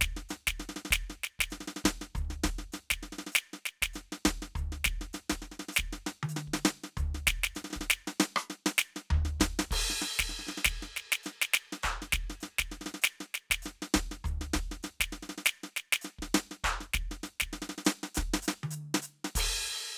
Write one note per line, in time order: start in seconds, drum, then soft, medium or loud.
0.01 kick soft
0.01 snare loud
0.08 kick soft
0.11 kick soft
0.17 snare soft
0.29 snare medium
0.29 hi-hat pedal soft
0.47 kick soft
0.47 snare medium
0.60 snare soft
0.69 snare soft
0.76 snare medium
0.85 snare medium
0.91 kick soft
0.91 snare loud
0.91 hi-hat pedal soft
0.97 kick soft
1.10 snare soft
1.23 snare medium
1.39 kick soft
1.39 snare loud
1.50 snare soft
1.50 hi-hat pedal soft
1.60 snare soft
1.68 snare medium
1.76 snare medium
1.84 kick soft
1.84 snare loud
2.01 snare soft
2.15 kick soft
2.15 floor tom medium
2.15 hi-hat pedal soft
2.22 kick soft
2.25 kick soft
2.30 snare soft
2.44 kick soft
2.44 snare loud
2.51 kick soft
2.54 kick soft
2.58 snare soft
2.72 snare medium
2.72 hi-hat pedal soft
2.90 kick soft
2.90 snare medium
3.03 snare soft
3.12 snare soft
3.18 snare medium
3.27 snare soft
3.32 snare loud
3.32 hi-hat pedal soft
3.53 snare soft
3.66 snare medium
3.82 kick soft
3.82 snare loud
3.93 snare soft
3.93 hi-hat pedal soft
4.12 snare medium
4.25 kick soft
4.25 snare loud
4.42 snare soft
4.55 kick soft
4.55 floor tom medium
4.55 hi-hat pedal soft
4.62 kick soft
4.72 snare soft
4.84 kick medium
4.84 snare loud
4.93 kick soft
5.01 snare soft
5.13 snare medium
5.13 hi-hat pedal soft
5.30 kick soft
5.30 snare medium
5.42 snare soft
5.52 snare soft
5.59 snare medium
5.69 snare soft
5.69 hi-hat pedal medium
5.76 kick soft
5.76 snare loud
5.84 kick soft
5.93 snare soft
6.06 snare medium
6.23 open hi-hat soft
6.23 high tom loud
6.29 hi-hat pedal medium
6.36 snare medium
6.47 kick soft
6.54 snare medium
6.65 snare loud
6.84 snare soft
6.97 kick soft
6.97 floor tom loud
6.97 hi-hat pedal soft
7.06 kick soft
7.15 snare soft
7.27 kick soft
7.27 snare loud
7.34 kick soft
7.44 snare medium
7.55 snare medium
7.55 hi-hat pedal soft
7.64 snare soft
7.70 snare soft
7.73 kick soft
7.73 snare medium
7.81 snare medium
7.90 snare loud
8.07 snare medium
8.20 snare loud
8.20 hi-hat pedal medium
8.36 cross-stick loud
8.50 snare medium
8.66 snare loud
8.78 snare loud
8.78 hi-hat pedal medium
8.96 snare medium
9.10 kick soft
9.10 floor tom loud
9.17 kick soft
9.20 kick soft
9.25 snare soft
9.40 kick soft
9.40 snare loud
9.40 hi-hat pedal medium
9.47 kick soft
9.59 snare loud
9.71 kick medium
9.71 crash medium
9.79 kick soft
9.90 snare soft
10.02 snare medium
10.02 hi-hat pedal soft
10.19 kick soft
10.19 snare loud
10.29 snare soft
10.39 snare soft
10.47 snare soft
10.48 snare medium
10.57 snare medium
10.65 kick soft
10.65 snare loud
10.65 hi-hat pedal medium
10.72 kick soft
10.82 snare soft
10.96 snare medium
11.12 snare loud
11.23 snare medium
11.23 hi-hat pedal soft
11.42 snare loud
11.54 snare loud
11.72 snare medium
11.83 kick soft
11.83 percussion medium
11.83 hi-hat pedal soft
12.02 snare soft
12.13 kick soft
12.13 snare loud
12.23 kick soft
12.30 snare soft
12.40 snare medium
12.40 hi-hat pedal soft
12.59 kick soft
12.59 snare loud
12.72 snare soft
12.81 snare soft
12.86 snare medium
12.94 snare soft
13.02 snare loud
13.02 hi-hat pedal medium
13.20 snare soft
13.34 snare medium
13.50 kick soft
13.50 snare loud
13.62 snare medium
13.62 hi-hat pedal medium
13.82 snare medium
13.94 kick soft
13.94 snare loud
14.01 kick soft
14.04 kick soft
14.11 snare soft
14.24 kick soft
14.24 floor tom medium
14.24 hi-hat pedal soft
14.32 kick soft
14.41 snare soft
14.54 kick soft
14.54 snare medium
14.62 kick soft
14.64 kick soft
14.71 snare soft
14.83 snare medium
14.83 hi-hat pedal soft
15.00 kick soft
15.00 snare loud
15.12 snare soft
15.23 snare soft
15.29 snare medium
15.38 snare soft
15.45 snare loud
15.45 hi-hat pedal medium
15.64 snare soft
15.77 snare medium
15.93 snare loud
16.01 snare soft
16.01 hi-hat pedal medium
16.19 kick soft
16.19 snare medium
16.34 snare loud
16.51 snare soft
16.64 kick soft
16.64 percussion medium
16.64 hi-hat pedal soft
16.70 kick soft
16.81 snare soft
16.94 kick soft
16.94 snare medium
17.02 kick soft
17.11 snare soft
17.23 snare medium
17.23 hi-hat pedal soft
17.40 kick soft
17.40 snare medium
17.53 snare medium
17.62 snare medium
17.69 snare medium
17.78 snare soft
17.85 snare loud
17.85 hi-hat pedal medium
18.03 snare medium
18.15 kick medium
18.15 snare medium
18.15 hi-hat pedal loud
18.24 kick soft
18.28 kick soft
18.34 snare loud
18.42 hi-hat pedal medium
18.48 snare medium
18.63 open hi-hat soft
18.63 high tom loud
18.71 hi-hat pedal medium
18.94 snare loud
19.02 hi-hat pedal medium
19.24 snare medium
19.35 kick medium
19.35 hi-hat pedal loud
19.35 crash medium
19.40 kick soft
19.40 snare soft
19.46 kick soft
19.57 snare soft
19.77 snare soft